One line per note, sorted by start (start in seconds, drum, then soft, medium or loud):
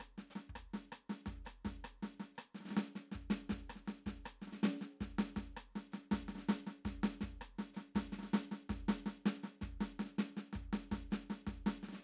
0.01 cross-stick medium
0.19 snare soft
0.31 hi-hat pedal medium
0.36 snare soft
0.50 kick soft
0.56 cross-stick medium
0.74 snare soft
0.93 cross-stick medium
1.10 snare soft
1.10 hi-hat pedal soft
1.27 kick soft
1.27 snare soft
1.46 cross-stick medium
1.46 hi-hat pedal soft
1.66 kick soft
1.66 snare soft
1.85 cross-stick medium
2.03 snare soft
2.21 snare soft
2.36 cross-stick medium
2.36 hi-hat pedal soft
2.55 snare soft
2.55 hi-hat pedal medium
2.61 snare soft
2.66 snare soft
2.69 snare soft
2.71 snare soft
2.77 snare medium
2.77 hi-hat pedal soft
2.96 snare soft
2.96 hi-hat pedal soft
3.12 kick soft
3.12 snare soft
3.31 snare medium
3.31 hi-hat pedal soft
3.50 kick soft
3.50 snare medium
3.70 cross-stick medium
3.76 snare soft
3.86 snare soft
3.86 hi-hat pedal soft
4.07 kick soft
4.07 snare soft
4.26 cross-stick medium
4.26 hi-hat pedal soft
4.42 snare soft
4.48 snare soft
4.53 snare soft
4.64 snare medium
4.64 hi-hat pedal soft
4.82 snare soft
5.01 kick soft
5.01 snare soft
5.19 snare medium
5.19 hi-hat pedal soft
5.37 kick soft
5.37 snare soft
5.57 cross-stick medium
5.76 snare soft
5.92 snare soft
5.92 hi-hat pedal soft
6.12 kick soft
6.12 snare medium
6.29 snare soft
6.36 snare soft
6.39 snare soft
6.49 snare medium
6.67 snare soft
6.67 hi-hat pedal soft
6.86 kick soft
6.86 snare soft
7.04 snare medium
7.04 hi-hat pedal medium
7.22 kick soft
7.22 snare soft
7.42 cross-stick medium
7.59 snare soft
7.75 snare soft
7.75 hi-hat pedal soft
7.96 kick soft
7.96 snare medium
8.10 snare soft
8.10 hi-hat pedal soft
8.19 snare soft
8.24 snare soft
8.34 snare medium
8.52 snare soft
8.70 kick soft
8.70 snare soft
8.89 snare medium
9.07 snare soft
9.26 snare medium
9.43 snare soft
9.43 hi-hat pedal soft
9.62 kick soft
9.62 snare soft
9.81 snare medium
9.81 hi-hat pedal medium
10.00 snare soft
10.06 snare soft
10.19 snare medium
10.19 hi-hat pedal soft
10.38 snare soft
10.54 kick soft
10.54 snare soft
10.74 snare medium
10.74 hi-hat pedal soft
10.92 kick soft
10.92 snare medium
11.11 snare medium
11.11 hi-hat pedal soft
11.31 snare soft
11.48 kick soft
11.48 snare soft
11.67 snare medium
11.84 snare soft
11.89 snare soft
11.93 snare soft
11.95 snare soft